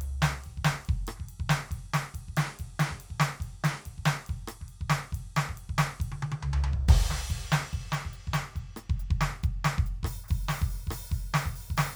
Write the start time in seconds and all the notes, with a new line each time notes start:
0.01 ride
0.22 snare, ride
0.44 kick, ride
0.57 kick
0.64 snare, ride
0.84 snare, ride
0.89 kick
1.07 cross-stick, ride
1.16 snare
1.20 kick, snare
1.29 ride
1.40 kick
1.49 snare, ride
1.69 kick, snare, ride
1.93 snare, ride
2.07 snare
2.11 kick, snare, ride
2.28 kick
2.37 snare, ride
2.59 kick, ride
2.79 snare, ride
2.91 kick, snare
3.00 ride
3.10 kick
3.20 snare, ride
3.40 kick, snare, ride
3.64 snare, ride
3.85 kick, ride
3.98 kick
4.05 snare, ride
4.14 snare
4.25 snare, ride
4.29 kick
4.47 cross-stick, ride
4.61 kick, snare
4.68 ride
4.81 kick
4.90 snare, ride
5.12 kick, snare, ride
5.36 snare, ride
5.49 kick, snare
5.57 ride
5.69 kick
5.78 snare, ride
5.93 snare
6.00 kick, ride
6.12 high tom
6.22 high tom
6.32 high tom
6.43 floor tom
6.53 floor tom
6.64 floor tom
6.73 kick
6.88 kick, crash
7.10 snare
7.30 closed hi-hat, kick
7.52 closed hi-hat, snare
7.73 closed hi-hat, kick
7.92 closed hi-hat, snare
8.05 kick, snare
8.13 closed hi-hat
8.27 kick
8.33 closed hi-hat, snare
8.53 closed hi-hat, kick, snare
8.76 closed hi-hat, cross-stick
8.89 kick
8.95 snare
8.99 closed hi-hat
9.10 kick
9.21 closed hi-hat, snare
9.41 closed hi-hat, kick, snare
9.64 closed hi-hat, snare
9.77 kick, snare
9.86 closed hi-hat
10.03 open hi-hat, kick, cross-stick
10.24 snare
10.28 open hi-hat, kick
10.48 open hi-hat, snare
10.62 kick, snare
10.70 open hi-hat
10.87 kick, cross-stick
10.91 open hi-hat
11.09 kick, snare
11.14 open hi-hat
11.34 open hi-hat, snare
11.45 kick
11.55 open hi-hat
11.70 kick
11.77 open hi-hat, snare